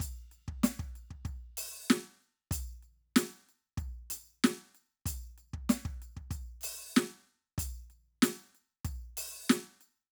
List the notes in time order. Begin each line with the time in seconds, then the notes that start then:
0.01 kick, percussion
0.33 percussion
0.49 kick
0.64 snare, percussion
0.80 kick
0.96 percussion
1.12 kick
1.26 kick, percussion
1.58 percussion
1.91 snare, percussion
2.23 percussion
2.52 kick, percussion
2.84 percussion
3.17 snare, percussion
3.50 percussion
3.78 kick, percussion
4.11 percussion
4.45 snare, percussion
4.76 percussion
5.07 kick, percussion
5.39 percussion
5.54 kick
5.70 snare, percussion
5.86 kick
6.03 percussion
6.18 kick
6.32 kick, percussion
6.62 percussion
6.64 percussion
6.97 snare, percussion
7.59 kick, percussion
7.91 percussion
8.23 snare, percussion
8.56 percussion
8.86 kick, percussion
9.18 percussion
9.51 snare, percussion
9.82 percussion